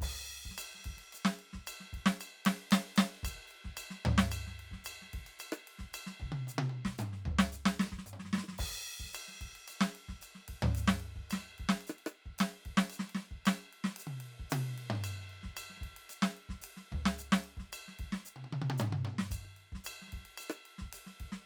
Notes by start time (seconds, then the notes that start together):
0.01 kick, hi-hat pedal, crash
0.15 kick
0.45 kick
0.51 snare
0.58 hi-hat pedal, ride bell
0.74 snare
0.79 snare
0.84 kick, ride
0.91 kick
0.97 snare, ride
1.12 hi-hat pedal, ride bell
1.25 snare
1.39 ride
1.53 kick, snare
1.67 hi-hat pedal, ride bell
1.80 snare
1.93 kick, ride
2.06 snare
2.20 hi-hat pedal, ride bell
2.45 snare, ride
2.71 snare, hi-hat pedal, ride
2.96 snare, hi-hat pedal, ride
3.23 kick, snare, hi-hat pedal, ride bell
3.35 kick
3.47 hi-hat pedal, ride
3.64 kick, snare
3.77 hi-hat pedal, ride bell
3.90 snare
4.05 floor tom
4.18 snare
4.31 hi-hat pedal, ride bell
4.47 snare
4.59 ride
4.71 kick, snare
4.80 snare
4.84 hi-hat pedal, ride bell
5.02 snare
5.13 kick, ride
5.20 kick
5.26 ride bell
5.39 hi-hat pedal, ride bell
5.52 cross-stick
5.67 ride
5.78 kick, snare
5.85 kick
5.93 hi-hat pedal, ride bell
6.06 snare
6.20 kick, high tom
6.28 kick
6.32 high tom
6.47 hi-hat pedal, high tom
6.58 high tom
6.69 high tom
6.84 kick, snare
6.98 hi-hat pedal, mid tom
7.13 snare
7.25 kick, floor tom
7.39 snare
7.52 hi-hat pedal
7.65 snare
7.79 snare
7.92 kick, snare
7.98 snare
8.06 hi-hat pedal, mid tom
8.13 mid tom
8.19 snare
8.25 snare
8.33 snare
8.38 snare
8.44 cross-stick
8.48 snare
8.53 snare
8.58 kick, hi-hat pedal, crash
8.73 kick
8.99 kick
9.05 snare
9.13 hi-hat pedal, ride bell
9.28 snare
9.35 snare
9.41 kick, ride
9.46 kick
9.55 ride
9.68 hi-hat pedal, ride bell
9.81 snare
9.87 snare
9.95 ride
10.08 kick, snare
10.21 hi-hat pedal, ride bell
10.35 snare
10.48 kick, ride
10.62 floor tom
10.75 hi-hat pedal, ride
10.87 snare
11.00 ride
11.16 kick
11.30 snare, hi-hat pedal, ride bell
11.58 kick, ride
11.69 snare
11.81 ride bell
11.87 cross-stick, hi-hat pedal
11.98 ride
12.06 cross-stick
12.25 kick
12.38 snare, hi-hat pedal, ride
12.65 kick, ride
12.77 snare
12.90 hi-hat pedal, ride bell
12.99 snare
13.09 ride
13.15 snare
13.31 kick
13.45 snare, hi-hat pedal, ride bell
13.73 ride
13.84 snare
13.96 hi-hat pedal, ride
14.07 high tom
14.20 ride
14.39 kick
14.50 hi-hat pedal, high tom, ride
14.78 ride
14.90 mid tom
14.95 mid tom
15.04 hi-hat pedal, ride bell
15.29 ride
15.43 kick, snare
15.56 hi-hat pedal, ride bell
15.70 snare
15.77 snare
15.81 kick, snare, ride
15.86 kick
15.96 ride
16.09 hi-hat pedal, ride bell
16.22 snare
16.37 ride
16.49 kick, snare
16.61 hi-hat pedal, ride
16.77 snare
16.92 kick, floor tom
16.98 kick
17.05 snare
17.18 hi-hat pedal, ride bell
17.32 snare
17.44 ride
17.57 kick, snare
17.72 hi-hat pedal, ride bell
17.88 snare
17.99 kick, ride
18.05 kick
18.12 snare
18.25 hi-hat pedal
18.36 high tom
18.44 high tom
18.52 high tom
18.62 high tom
18.70 high tom
18.78 hi-hat pedal, mid tom
18.92 high tom
19.05 mid tom
19.18 snare
19.30 kick, hi-hat pedal, ride bell
19.37 kick
19.43 kick, cross-stick
19.56 ride
19.72 kick, snare
19.84 hi-hat pedal, ride bell
20.02 snare
20.08 snare
20.12 kick, snare, ride
20.18 kick, snare
20.25 ride
20.37 hi-hat pedal, ride bell
20.50 cross-stick
20.65 ride
20.78 kick, snare
20.93 hi-hat pedal, ride
21.06 snare
21.20 kick, ride
21.32 snare